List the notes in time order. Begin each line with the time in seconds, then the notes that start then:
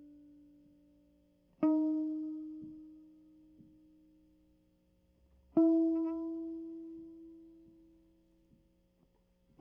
1.63 D#4
5.58 E4